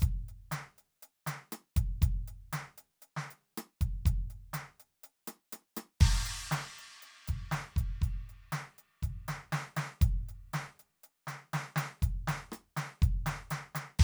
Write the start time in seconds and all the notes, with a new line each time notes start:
0.01 kick, closed hi-hat, hi-hat pedal
0.28 closed hi-hat
0.51 snare, open hi-hat
0.78 open hi-hat
1.03 open hi-hat
1.27 snare, open hi-hat
1.52 cross-stick, open hi-hat
1.76 kick, closed hi-hat
2.02 kick, open hi-hat
2.28 open hi-hat
2.53 snare, open hi-hat
2.78 open hi-hat
3.02 open hi-hat
3.17 snare
3.31 open hi-hat
3.57 cross-stick, closed hi-hat
3.81 kick, closed hi-hat
4.06 kick, closed hi-hat
4.30 open hi-hat
4.53 snare, open hi-hat
4.80 open hi-hat
5.04 open hi-hat
5.28 cross-stick, open hi-hat
5.53 cross-stick, open hi-hat
5.77 cross-stick, closed hi-hat
6.00 kick, crash
6.26 open hi-hat
6.51 snare, open hi-hat
6.79 open hi-hat
7.02 open hi-hat
7.28 kick, open hi-hat
7.51 snare, closed hi-hat
7.76 kick, closed hi-hat
7.81 kick
8.02 kick, open hi-hat
8.29 open hi-hat
8.52 snare, open hi-hat
8.78 closed hi-hat
9.03 kick, open hi-hat
9.28 snare, open hi-hat
9.52 snare, open hi-hat
9.77 snare, open hi-hat
10.01 kick, open hi-hat
10.29 open hi-hat
10.53 snare, open hi-hat
10.79 open hi-hat
11.04 open hi-hat
11.27 open hi-hat, snare
11.53 snare, open hi-hat
11.76 snare, closed hi-hat
12.02 kick, open hi-hat
12.28 snare, open hi-hat
12.52 cross-stick, open hi-hat
12.77 snare, closed hi-hat
13.02 kick, closed hi-hat
13.26 snare, open hi-hat
13.51 snare, open hi-hat
13.75 snare, open hi-hat
13.99 kick, crash